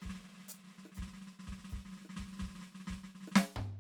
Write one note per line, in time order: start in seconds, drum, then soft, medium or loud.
0.01 snare soft
0.01 hi-hat pedal soft
0.05 kick soft
0.05 snare soft
0.10 kick soft
0.10 snare medium
0.15 snare soft
0.20 snare soft
0.25 snare soft
0.29 snare soft
0.33 snare soft
0.35 snare soft
0.37 snare soft
0.40 snare soft
0.44 snare soft
0.48 snare soft
0.48 hi-hat pedal medium
0.59 snare soft
0.67 snare soft
0.70 snare soft
0.73 snare soft
0.78 snare soft
0.83 cross-stick soft
0.83 snare soft
0.89 cross-stick soft
0.89 snare soft
0.95 snare soft
0.95 hi-hat pedal soft
0.97 kick soft
0.97 snare soft
1.04 kick soft
1.04 snare soft
1.14 snare soft
1.17 snare soft
1.22 snare soft
1.27 snare soft
1.33 snare soft
1.39 snare soft
1.44 snare soft
1.47 kick soft
1.47 snare soft
1.52 kick soft
1.52 snare soft
1.58 snare soft
1.64 snare soft
1.69 kick soft
1.69 snare soft
1.69 hi-hat pedal soft
1.73 snare soft
1.76 kick soft
1.76 snare soft
1.79 snare soft
1.85 snare soft
1.89 snare soft
1.92 snare soft
1.97 snare soft
2.01 cross-stick soft
2.01 snare soft
2.10 snare soft
2.13 snare soft
2.17 kick soft
2.17 snare medium
2.21 kick soft
2.21 snare soft
2.26 snare soft
2.28 snare soft
2.33 snare soft
2.37 snare soft
2.39 kick soft
2.39 snare medium
2.44 snare soft
2.48 snare soft
2.50 snare soft
2.55 snare soft
2.59 snare soft
2.62 snare soft
2.67 snare soft
2.72 snare soft
2.75 snare soft
2.80 snare soft
2.85 snare soft
2.88 kick soft
2.88 snare medium
2.92 snare medium
2.98 snare soft
3.04 snare soft
3.09 snare soft
3.15 snare soft
3.21 snare soft
3.23 snare soft
3.28 cross-stick soft
3.28 snare soft
3.36 snare loud
3.56 kick soft
3.56 mid tom medium
3.62 kick soft